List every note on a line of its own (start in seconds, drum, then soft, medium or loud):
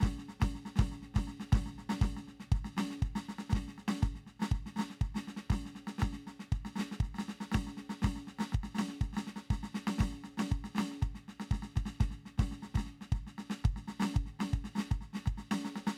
0.01 kick medium
0.01 snare medium
0.05 snare medium
0.19 snare soft
0.29 snare soft
0.41 snare soft
0.42 kick medium
0.42 snare medium
0.56 snare soft
0.66 snare soft
0.76 kick medium
0.76 snare medium
0.80 snare medium
0.92 snare soft
1.03 snare soft
1.15 kick medium
1.15 snare soft
1.17 snare medium
1.28 snare soft
1.40 snare soft
1.53 kick medium
1.53 snare medium
1.55 snare medium
1.66 snare soft
1.79 snare soft
1.90 snare medium
2.02 kick medium
2.02 snare medium
2.17 snare soft
2.28 snare soft
2.40 snare soft
2.52 kick medium
2.52 snare soft
2.65 snare medium
2.77 snare medium
2.77 snare loud
2.91 snare soft
3.03 kick soft
3.03 snare soft
3.16 snare medium
3.29 snare soft
3.50 kick medium
3.50 snare soft
3.55 snare medium
3.69 snare soft
4.03 kick medium
4.03 snare medium
4.16 snare soft
4.27 snare soft
4.40 snare soft
4.42 snare medium
4.52 kick medium
4.52 snare soft
4.67 snare soft
4.77 snare medium
4.80 snare medium
4.91 snare soft
5.02 kick soft
5.02 snare soft
5.15 snare soft
5.15 snare medium
5.28 snare soft
5.37 snare soft
5.50 kick medium
5.50 snare soft
5.53 snare medium
5.66 snare soft
5.76 snare soft
5.88 snare soft
5.99 snare soft
6.03 kick soft
6.03 snare medium
6.13 snare soft
6.28 snare soft
6.40 snare soft
6.53 kick soft
6.53 snare soft
6.66 snare medium
6.76 snare medium
6.79 snare medium
6.92 snare soft
7.01 kick soft
7.01 snare soft
7.15 snare soft
7.19 snare medium
7.29 snare soft
7.41 snare soft
7.52 snare medium
7.55 kick soft
7.55 snare medium
7.67 snare soft
7.78 snare soft
7.90 snare soft
8.03 kick soft
8.03 snare medium
8.05 snare medium
8.16 snare soft
8.28 snare soft
8.39 snare soft
8.39 snare medium
8.53 kick soft
8.53 snare soft
8.64 snare medium
8.75 snare medium
8.79 snare medium
8.89 snare soft
9.02 kick soft
9.02 snare soft
9.14 snare soft
9.17 snare medium
9.28 snare soft
9.37 snare soft
9.51 kick soft
9.51 snare medium
9.64 snare medium
9.75 snare medium
9.88 snare medium
9.99 kick medium
9.99 snare medium
10.01 snare loud
10.13 snare soft
10.24 snare soft
10.38 snare soft
10.40 snare medium
10.52 kick soft
10.52 snare soft
10.65 snare soft
10.76 snare medium
10.79 snare loud
10.92 snare soft
11.02 kick soft
11.02 snare soft
11.15 snare soft
11.29 snare soft
11.40 snare soft
11.52 kick soft
11.52 snare medium
11.63 snare soft
11.76 kick soft
11.76 snare soft
11.86 snare medium
12.01 kick medium
12.01 snare medium
12.11 snare soft
12.26 snare soft
12.38 kick medium
12.38 snare soft
12.40 snare medium
12.52 snare soft
12.63 snare soft
12.75 kick soft
12.75 snare medium
12.78 snare medium
12.86 snare soft
13.02 snare soft
13.13 kick soft
13.13 snare soft
13.27 snare soft
13.39 snare soft
13.51 snare medium
13.65 kick medium
13.65 snare soft
13.77 snare soft
13.88 snare medium
14.00 snare medium
14.03 snare medium
14.15 kick medium
14.15 snare soft
14.26 snare soft
14.40 snare soft
14.40 snare medium
14.54 kick soft
14.54 snare soft
14.65 snare soft
14.76 snare medium
14.79 snare medium
14.91 kick soft
14.91 snare soft
15.02 snare soft
15.14 snare soft
15.15 snare medium
15.26 kick soft
15.26 snare soft
15.38 snare soft
15.52 snare loud
15.65 snare soft
15.76 snare soft
15.88 snare medium